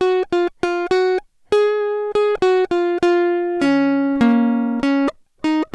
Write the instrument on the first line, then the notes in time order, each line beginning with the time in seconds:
acoustic guitar
0.02 F#4
0.34 F4
0.65 F4
0.93 F#4
1.54 G#4
2.17 G#4
2.44 F#4
2.73 F4
3.04 F4
3.63 C#4
4.22 A#3
4.85 C#4
5.46 D#4